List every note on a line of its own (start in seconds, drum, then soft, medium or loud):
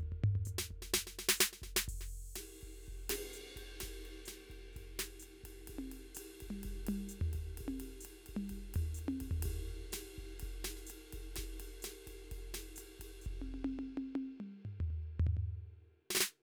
0.01 kick soft
0.01 floor tom soft
0.08 kick soft
0.12 floor tom medium
0.24 floor tom loud
0.36 floor tom medium
0.45 floor tom medium
0.45 hi-hat pedal medium
0.59 snare medium
0.71 kick soft
0.71 floor tom soft
0.76 kick soft
0.82 snare soft
0.94 kick soft
0.94 snare loud
1.02 kick soft
1.07 snare soft
1.19 snare medium
1.29 snare loud
1.37 snare loud
1.37 hi-hat pedal medium
1.53 snare soft
1.62 kick soft
1.62 snare soft
1.67 kick soft
1.77 snare loud
1.84 hi-hat pedal soft
1.88 kick soft
1.88 crash medium
1.94 kick soft
2.01 snare soft
2.36 snare medium
2.36 hi-hat pedal medium
2.36 ride medium
2.62 kick soft
2.62 ride soft
2.83 hi-hat pedal soft
2.87 kick soft
2.87 ride soft
2.93 kick soft
3.10 snare medium
3.10 ride loud
3.33 hi-hat pedal medium
3.33 ride soft
3.56 kick soft
3.56 ride soft
3.61 kick soft
3.81 kick soft
3.81 snare medium
3.81 ride medium
3.88 kick soft
3.97 snare soft
4.06 ride soft
4.26 snare soft
4.26 hi-hat pedal medium
4.26 ride medium
4.50 kick soft
4.50 ride soft
4.73 kick soft
4.73 hi-hat pedal soft
4.73 ride soft
4.81 kick soft
4.99 snare medium
4.99 ride medium
5.20 hi-hat pedal medium
5.20 ride soft
5.44 kick soft
5.44 ride medium
5.64 hi-hat pedal soft
5.64 ride medium
5.70 kick soft
5.75 kick soft
5.79 high tom medium
5.92 ride soft
6.15 hi-hat pedal medium
6.15 ride medium
6.41 kick soft
6.41 ride soft
6.47 kick soft
6.47 mid tom medium
6.61 hi-hat pedal soft
6.61 ride medium
6.65 kick soft
6.87 mid tom loud
6.87 ride medium
7.09 hi-hat pedal medium
7.09 ride soft
7.21 floor tom medium
7.33 kick soft
7.33 ride soft
7.40 kick soft
7.58 kick soft
7.58 ride medium
7.66 kick soft
7.66 high tom loud
7.80 ride medium
8.01 hi-hat pedal medium
8.05 ride medium
8.26 kick soft
8.26 ride soft
8.37 mid tom loud
8.44 hi-hat pedal soft
8.50 kick soft
8.50 ride soft
8.56 kick soft
8.74 floor tom medium
8.74 ride medium
8.95 hi-hat pedal medium
8.99 ride soft
9.08 high tom loud
9.21 kick soft
9.21 ride medium
9.27 kick soft
9.31 floor tom medium
9.39 floor tom soft
9.39 hi-hat pedal soft
9.43 kick soft
9.43 ride medium
9.52 kick soft
9.69 ride soft
9.93 snare medium
9.93 hi-hat pedal medium
9.93 ride medium
10.18 kick soft
10.23 kick soft
10.29 snare soft
10.39 kick soft
10.39 hi-hat pedal soft
10.39 ride medium
10.65 snare medium
10.65 ride medium
10.77 snare soft
10.87 hi-hat pedal medium
10.87 ride medium
11.13 kick soft
11.13 ride medium
11.19 kick soft
11.36 kick soft
11.36 snare medium
11.36 ride medium
11.44 kick soft
11.60 ride medium
11.82 snare medium
11.82 hi-hat pedal medium
11.82 ride medium
12.07 kick soft
12.07 ride soft
12.32 kick soft
12.32 ride soft
12.54 snare medium
12.54 ride medium
12.76 hi-hat pedal medium
12.76 ride medium
13.00 kick soft
13.00 ride medium
13.22 hi-hat pedal soft
13.26 kick soft
13.32 kick soft
13.42 high tom medium
13.54 high tom medium
13.65 high tom loud
13.79 high tom medium
13.98 high tom medium
14.16 high tom loud
14.40 mid tom medium
14.65 floor tom medium
14.81 floor tom medium
14.91 floor tom soft
15.20 floor tom loud
15.27 floor tom medium
15.37 floor tom medium
16.11 snare medium
16.15 snare medium
16.17 snare medium
16.21 snare loud